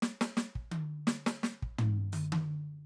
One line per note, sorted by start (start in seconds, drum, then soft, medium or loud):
0.02 snare loud
0.21 snare medium
0.37 snare loud
0.55 kick soft
0.71 high tom loud
1.07 snare loud
1.26 snare medium
1.43 snare medium
1.62 kick soft
1.78 floor tom loud
2.12 hi-hat pedal medium
2.12 high tom loud
2.32 high tom loud